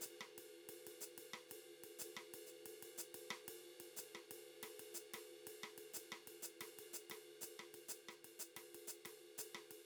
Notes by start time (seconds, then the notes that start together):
0.01 hi-hat pedal
0.05 ride
0.21 cross-stick
0.38 ride
0.69 ride
0.87 ride
1.01 hi-hat pedal
1.18 ride
1.33 cross-stick
1.48 hi-hat pedal, ride
1.84 ride
1.99 hi-hat pedal, ride
2.16 cross-stick
2.34 ride
2.46 hi-hat pedal
2.66 ride
2.82 ride
2.98 hi-hat pedal
3.14 ride
3.30 cross-stick
3.48 ride
3.80 ride
3.96 hi-hat pedal, ride
4.15 cross-stick
4.31 ride
4.63 cross-stick, ride
4.79 ride
4.94 hi-hat pedal
5.14 cross-stick, ride
5.47 ride
5.63 cross-stick
5.78 ride
5.93 hi-hat pedal, ride
6.12 cross-stick
6.27 ride
6.42 hi-hat pedal
6.61 cross-stick, ride
6.65 hi-hat pedal
6.79 ride
6.93 hi-hat pedal
7.10 cross-stick, ride
7.41 hi-hat pedal, ride
7.59 cross-stick
7.74 ride
7.88 hi-hat pedal, ride
8.08 cross-stick, hi-hat pedal
8.24 ride
8.39 hi-hat pedal
8.56 cross-stick, ride
8.74 ride
8.87 hi-hat pedal
9.05 cross-stick, ride
9.38 hi-hat pedal, ride
9.55 cross-stick
9.71 ride